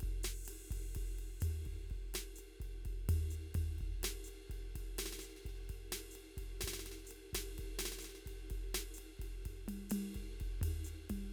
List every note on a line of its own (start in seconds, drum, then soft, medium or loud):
0.01 kick soft
0.01 ride soft
0.09 kick soft
0.24 snare medium
0.24 crash medium
0.46 hi-hat pedal medium
0.46 ride medium
0.71 kick soft
0.71 ride soft
0.77 kick soft
0.95 kick soft
0.95 ride medium
1.03 kick soft
1.19 ride soft
1.41 floor tom medium
1.41 hi-hat pedal medium
1.41 ride medium
1.66 kick soft
1.66 ride soft
1.73 kick soft
1.91 kick soft
1.91 ride soft
1.97 kick soft
2.15 snare medium
2.15 ride medium
2.36 hi-hat pedal medium
2.36 ride soft
2.61 kick soft
2.61 ride soft
2.66 kick soft
2.86 kick soft
2.86 ride soft
2.92 kick soft
3.10 floor tom loud
3.10 ride medium
3.31 hi-hat pedal medium
3.31 ride soft
3.55 kick soft
3.55 floor tom medium
3.55 ride medium
3.79 kick soft
3.79 ride soft
3.87 kick soft
4.04 snare medium
4.04 ride medium
4.25 hi-hat pedal medium
4.25 ride soft
4.50 kick soft
4.50 ride soft
4.56 kick soft
4.76 kick soft
4.76 ride soft
4.81 kick soft
4.99 snare medium
4.99 ride medium
5.06 snare medium
5.13 snare soft
5.20 snare soft
5.20 hi-hat pedal medium
5.25 snare soft
5.30 snare soft
5.37 snare soft
5.43 kick soft
5.43 snare soft
5.43 ride soft
5.50 snare soft
5.56 snare soft
5.61 snare soft
5.64 snare soft
5.67 kick soft
5.67 snare soft
5.67 ride soft
5.93 snare medium
5.93 ride medium
6.12 hi-hat pedal medium
6.16 ride soft
6.38 kick soft
6.38 ride soft
6.43 kick soft
6.61 kick soft
6.61 snare medium
6.61 ride medium
6.68 kick soft
6.68 snare medium
6.74 snare medium
6.80 snare soft
6.86 snare soft
6.86 ride soft
6.92 snare soft
6.99 snare soft
7.05 snare soft
7.05 hi-hat pedal medium
7.11 snare soft
7.11 ride soft
7.34 kick soft
7.34 snare medium
7.34 ride medium
7.39 kick soft
7.59 kick soft
7.59 ride soft
7.65 kick soft
7.79 snare medium
7.79 ride medium
7.86 snare medium
7.93 snare soft
7.99 snare soft
7.99 hi-hat pedal medium
7.99 ride soft
8.05 snare soft
8.10 snare soft
8.16 snare soft
8.21 snare soft
8.26 kick soft
8.26 snare soft
8.26 ride soft
8.30 snare soft
8.34 snare soft
8.37 snare soft
8.41 snare soft
8.51 kick soft
8.51 ride soft
8.75 snare medium
8.75 ride medium
8.95 hi-hat pedal medium
8.99 ride soft
9.20 kick soft
9.20 ride soft
9.25 kick soft
9.46 kick soft
9.46 ride soft
9.52 kick soft
9.69 mid tom medium
9.69 ride medium
9.90 hi-hat pedal medium
9.90 mid tom loud
9.90 ride medium
10.15 kick soft
10.15 ride soft
10.22 kick soft
10.41 kick soft
10.41 ride soft
10.48 kick soft
10.62 floor tom medium
10.62 ride medium
10.85 hi-hat pedal medium
10.85 ride soft
11.10 kick soft
11.10 mid tom medium
11.10 ride medium
11.17 kick soft